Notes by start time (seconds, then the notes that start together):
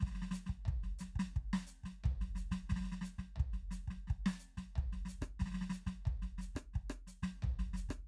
0.00 kick, snare
0.07 snare
0.11 snare
0.15 snare
0.22 snare
0.28 snare
0.31 snare, hi-hat pedal
0.46 kick, snare
0.65 kick, floor tom
0.83 snare
0.99 snare, hi-hat pedal
1.16 kick, snare
1.36 kick
1.53 snare
1.67 snare, hi-hat pedal
1.84 kick, snare
2.04 kick, floor tom
2.21 snare
2.35 snare, hi-hat pedal
2.51 kick, snare
2.70 kick, snare
2.76 snare
2.81 snare
2.84 snare
2.92 snare
3.01 snare, hi-hat pedal
3.18 kick, snare
3.36 kick, floor tom
3.53 snare
3.71 snare, hi-hat pedal
3.88 kick, snare
4.07 kick, snare
4.26 snare
4.39 snare, hi-hat pedal
4.57 kick, snare
4.62 kick
4.76 kick, floor tom
4.93 snare
5.05 snare, hi-hat pedal
5.22 kick, cross-stick
5.40 kick, snare
5.46 snare
5.52 snare
5.54 snare
5.61 snare
5.70 snare, hi-hat pedal
5.87 kick, snare
6.05 kick, floor tom
6.22 snare
6.38 snare, hi-hat pedal
6.55 kick, cross-stick
6.74 kick, snare
6.90 cross-stick
7.07 snare, hi-hat pedal
7.23 kick, snare
7.42 kick, floor tom
7.59 snare
7.73 snare, hi-hat pedal
7.89 kick, cross-stick